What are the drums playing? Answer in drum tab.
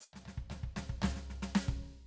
HH |p---------------|
SD |-oo-o-o-ooooo---|
FT |-oo-o-o-o-------|
BD |---o-o-o-----o--|